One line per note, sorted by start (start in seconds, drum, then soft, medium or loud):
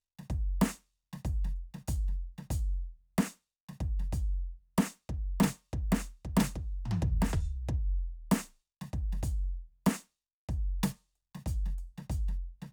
0.19 snare soft
0.30 kick medium
0.30 closed hi-hat soft
0.62 closed hi-hat loud
0.62 snare loud
1.13 snare soft
1.25 kick medium
1.25 closed hi-hat medium
1.45 snare soft
1.56 closed hi-hat soft
1.74 snare soft
1.88 closed hi-hat loud
1.88 kick medium
2.09 snare soft
2.20 closed hi-hat soft
2.38 snare soft
2.51 closed hi-hat loud
2.51 kick medium
3.18 closed hi-hat medium
3.18 snare loud
3.69 snare soft
3.81 kick medium
3.81 closed hi-hat soft
3.85 crash soft
4.00 snare soft
4.13 closed hi-hat medium
4.13 kick medium
4.78 closed hi-hat medium
4.78 snare loud
5.10 kick medium
5.41 snare loud
5.44 snare loud
5.74 kick medium
5.92 snare loud
6.25 kick medium
6.37 snare loud
6.41 snare loud
6.56 kick medium
6.86 mid tom loud
6.91 high tom loud
7.03 kick loud
7.22 snare loud
7.34 kick loud
7.66 kick soft
7.69 kick medium
8.32 closed hi-hat loud
8.32 snare loud
8.82 snare medium
8.94 kick medium
8.94 closed hi-hat soft
9.13 snare soft
9.23 closed hi-hat loud
9.23 kick medium
9.86 closed hi-hat loud
9.86 snare loud
10.49 closed hi-hat soft
10.49 kick medium
10.84 closed hi-hat loud
10.84 snare loud
11.16 closed hi-hat soft
11.35 snare soft
11.46 closed hi-hat medium
11.46 kick medium
11.46 snare soft
11.66 snare soft
11.79 closed hi-hat soft
11.98 snare soft
12.10 closed hi-hat medium
12.10 kick medium
12.29 snare soft
12.43 closed hi-hat soft
12.62 snare soft